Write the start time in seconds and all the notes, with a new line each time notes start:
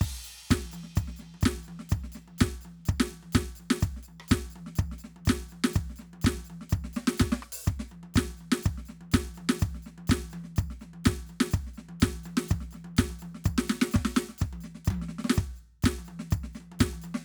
0.01 kick, percussion, crash, ride
0.24 percussion
0.50 kick, snare, percussion
0.62 high tom
0.72 high tom, percussion
0.83 snare
0.96 kick, high tom, percussion
1.08 snare
1.16 snare, percussion
1.22 high tom
1.34 high tom
1.41 kick, percussion
1.46 snare
1.57 high tom
1.63 percussion
1.68 high tom
1.79 snare
1.89 kick, percussion
1.94 high tom
2.04 snare
2.12 snare, percussion
2.16 high tom
2.28 high tom
2.38 kick, snare, percussion
2.52 high tom
2.61 high tom, percussion
2.79 snare
2.85 kick, high tom, percussion
3.00 snare
3.07 high tom, percussion
3.23 high tom
3.32 kick, snare, percussion
3.55 percussion
3.60 high tom
3.70 snare
3.81 kick, high tom, percussion
3.96 snare
4.03 percussion
4.08 high tom
4.20 high tom
4.28 kick, snare, percussion
4.44 high tom
4.50 percussion
4.56 high tom
4.66 snare
4.75 kick, percussion
4.80 high tom
4.92 snare
4.98 percussion
5.04 snare, high tom
5.16 high tom
5.25 kick, snare, percussion
5.40 high tom
5.49 high tom, percussion
5.64 snare
5.73 kick, percussion
5.78 high tom
5.90 snare
5.96 snare, percussion
6.02 high tom
6.13 high tom
6.22 kick, percussion
6.26 snare
6.37 high tom
6.45 percussion
6.50 high tom
6.61 snare
6.70 kick, percussion
6.74 high tom
6.84 snare
6.93 snare, percussion
7.07 snare
7.18 kick, snare, percussion
7.32 snare
7.42 cross-stick
7.52 percussion
7.65 kick, snare, percussion
7.79 snare
7.88 high tom, percussion
8.03 high tom
8.14 kick, snare, percussion
8.28 high tom
8.37 high tom, percussion
8.52 snare
8.63 kick, high tom, percussion
8.78 snare
8.85 snare, percussion
8.90 high tom
9.01 high tom
9.12 kick, snare, percussion
9.25 high tom
9.34 high tom, percussion
9.49 snare
9.60 kick, high tom, percussion
9.75 snare
9.82 snare, percussion
9.87 high tom
9.98 high tom
10.07 kick, snare, percussion
10.21 high tom
10.30 high tom, percussion
10.44 snare
10.56 kick, high tom, percussion
10.70 snare
10.79 snare, high tom, percussion
10.93 high tom
11.05 kick, snare, percussion
11.18 high tom
11.27 high tom, percussion
11.40 snare
11.51 kick, percussion
11.55 high tom
11.67 snare
11.74 percussion
11.78 snare, high tom
11.89 high tom
12.00 kick, snare, percussion
12.13 high tom
12.23 high tom, percussion
12.37 snare
12.48 kick, high tom, percussion
12.61 snare
12.71 snare, high tom, percussion
12.84 high tom
12.97 kick, snare, percussion
13.10 high tom
13.19 high tom, percussion
13.35 snare
13.44 kick, high tom, percussion
13.58 snare
13.68 snare, percussion
13.81 snare
13.92 kick, snare, percussion
14.05 snare
14.14 snare, percussion
14.29 snare
14.38 kick, snare, percussion
14.53 high tom
14.61 snare, percussion
14.75 snare
14.85 kick, percussion
14.90 high tom
15.02 snare
15.09 snare
15.19 snare
15.24 snare
15.30 snare, percussion
15.38 kick
15.56 percussion
15.83 kick, snare, percussion
15.98 high tom
16.05 high tom, percussion
16.19 snare
16.31 kick, high tom, percussion
16.43 snare
16.53 snare, percussion
16.60 high tom
16.72 high tom
16.79 kick, snare, percussion
16.93 high tom
17.02 high tom, percussion
17.14 snare